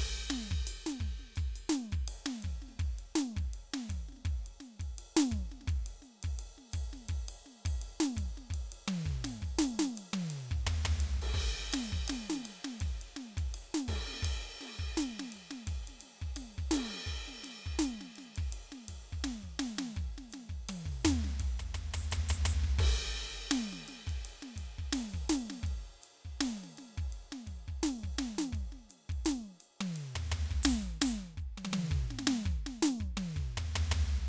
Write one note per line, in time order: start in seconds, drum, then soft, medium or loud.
0.31 snare medium
0.31 hi-hat pedal medium
0.51 kick medium
0.67 ride bell medium
0.87 snare medium
1.01 kick soft
1.20 snare soft
1.36 kick soft
1.36 hi-hat pedal medium
1.36 ride bell soft
1.56 ride bell soft
1.70 snare medium
1.92 kick soft
1.92 ride bell soft
2.08 ride loud
2.26 snare medium
2.43 kick soft
2.43 ride medium
2.62 snare soft
2.69 snare soft
2.80 kick medium
2.80 ride medium
2.99 ride medium
3.16 snare medium
3.37 kick soft
3.37 ride soft
3.54 ride medium
3.74 snare medium
3.89 kick soft
3.89 hi-hat pedal medium
3.89 ride medium
4.09 snare soft
4.13 snare soft
4.17 snare soft
4.25 kick medium
4.25 ride medium
4.47 ride medium
4.61 snare soft
4.61 hi-hat pedal medium
4.80 kick soft
4.80 ride medium
4.99 ride medium
5.17 snare loud
5.29 kick soft
5.29 hi-hat pedal medium
5.29 ride medium
5.52 snare soft
5.61 snare soft
5.68 kick medium
5.68 ride medium
5.87 ride medium
6.03 snare soft
6.03 hi-hat pedal medium
6.23 kick soft
6.23 ride medium
6.39 ride medium
6.58 snare soft
6.72 kick soft
6.72 hi-hat pedal medium
6.72 ride loud
6.93 snare soft
7.09 kick soft
7.09 ride medium
7.29 ride loud
7.43 snare soft
7.43 hi-hat pedal medium
7.66 kick medium
7.66 ride loud
7.82 ride medium
8.01 snare medium
8.15 kick soft
8.15 hi-hat pedal medium
8.15 ride medium
8.38 snare soft
8.51 kick soft
8.51 ride medium
8.72 ride medium
8.88 high tom loud
9.06 kick soft
9.25 snare medium
9.25 ride loud
9.43 kick soft
9.59 snare loud
9.59 ride loud
9.80 snare medium
9.96 hi-hat pedal medium
9.96 ride medium
10.14 high tom loud
10.31 hi-hat pedal medium
10.31 ride medium
10.51 kick soft
10.67 floor tom loud
10.86 floor tom loud
11.00 hi-hat pedal medium
11.00 ride medium
11.17 kick soft
11.22 ride medium
11.34 kick soft
11.34 crash medium
11.42 kick soft
11.73 snare medium
11.73 ride loud
11.93 kick soft
12.08 snare medium
12.08 ride loud
12.30 snare medium
12.34 snare soft
12.45 hi-hat pedal medium
12.45 ride medium
12.65 snare medium
12.81 kick soft
12.81 ride medium
13.02 ride medium
13.17 snare medium
13.37 kick soft
13.37 ride medium
13.55 ride medium
13.75 snare medium
13.89 kick soft
13.89 ride medium
14.08 snare soft
14.14 snare soft
14.20 kick soft
14.20 snare soft
14.25 ride loud
14.61 snare soft
14.61 hi-hat pedal medium
14.61 ride medium
14.79 kick soft
14.98 snare medium
14.98 ride medium
15.20 snare medium
15.33 kick soft
15.33 hi-hat pedal medium
15.33 ride medium
15.51 snare medium
15.68 kick soft
15.68 ride medium
15.88 snare soft
15.88 ride medium
16.00 snare soft
16.00 hi-hat pedal medium
16.00 ride medium
16.22 kick soft
16.37 snare soft
16.37 ride loud
16.58 kick soft
16.72 snare medium
16.72 ride medium
16.94 snare soft
17.07 kick soft
17.07 ride soft
17.28 snare soft
17.44 snare soft
17.44 hi-hat pedal medium
17.44 ride medium
17.66 kick soft
17.66 ride soft
17.79 snare medium
17.79 ride medium
18.01 snare soft
18.16 snare soft
18.16 ride medium
18.21 hi-hat pedal medium
18.36 kick soft
18.36 ride medium
18.53 ride medium
18.72 snare soft
18.89 kick soft
18.89 hi-hat pedal medium
18.89 ride medium
19.13 kick soft
19.24 snare medium
19.24 ride medium
19.44 kick soft
19.60 snare medium
19.60 hi-hat pedal medium
19.60 ride medium
19.79 snare medium
19.97 kick soft
19.97 ride soft
20.18 snare soft
20.30 snare soft
20.30 hi-hat pedal medium
20.30 ride medium
20.50 kick soft
20.69 high tom medium
20.69 ride loud
20.86 kick soft
21.02 snare loud
21.02 floor tom loud
21.02 hi-hat pedal medium
21.25 snare soft
21.40 kick soft
21.40 ride medium
21.60 open hi-hat medium
21.60 floor tom medium
21.75 open hi-hat medium
21.75 floor tom medium
21.94 open hi-hat medium
21.94 floor tom medium
22.12 open hi-hat loud
22.12 floor tom loud
22.29 open hi-hat loud
22.29 floor tom loud
22.46 open hi-hat loud
22.46 floor tom loud
22.64 kick soft
22.79 kick medium
22.79 crash medium
22.79 ride medium
23.13 hi-hat pedal medium
23.51 snare loud
23.51 ride loud
23.73 snare soft
23.88 snare soft
23.88 hi-hat pedal medium
23.88 ride medium
24.07 kick soft
24.07 ride medium
24.25 ride medium
24.43 snare soft
24.56 kick soft
24.56 hi-hat pedal medium
24.56 ride medium
24.79 kick soft
24.93 snare medium
24.93 ride loud
25.14 kick soft
25.30 snare medium
25.30 ride loud
25.50 snare medium
25.64 kick soft
25.64 ride medium
26.03 hi-hat pedal medium
26.03 ride medium
26.25 kick soft
26.41 snare medium
26.41 ride loud
26.64 snare soft
26.78 snare soft
26.78 hi-hat pedal medium
26.78 ride soft
26.98 kick soft
26.98 ride soft
27.13 ride medium
27.33 snare medium
27.47 kick soft
27.47 ride soft
27.68 kick soft
27.83 snare medium
27.83 ride medium
28.04 kick soft
28.19 snare medium
28.19 ride medium
28.39 snare medium
28.53 kick soft
28.53 ride soft
28.73 snare soft
28.90 snare soft
28.90 hi-hat pedal medium
28.90 ride medium
29.10 kick soft
29.10 ride soft
29.26 snare medium
29.26 ride medium
29.48 snare soft
29.61 hi-hat pedal medium
29.61 ride soft
29.81 high tom loud
29.93 hi-hat pedal medium
29.93 ride medium
30.16 floor tom loud
30.27 hi-hat pedal medium
30.32 floor tom loud
30.51 kick soft
30.64 open hi-hat loud
30.64 snare loud
31.02 open hi-hat loud
31.02 snare loud
31.38 kick soft
31.38 hi-hat pedal soft
31.58 high tom medium
31.65 high tom medium
31.74 high tom loud
31.92 kick medium
32.11 snare soft
32.19 snare medium
32.28 snare loud
32.46 kick medium
32.67 snare medium
32.83 snare loud
33.01 kick soft
33.18 closed hi-hat soft
33.18 high tom loud
33.37 kick soft
33.58 floor tom loud
33.76 floor tom loud
33.92 floor tom loud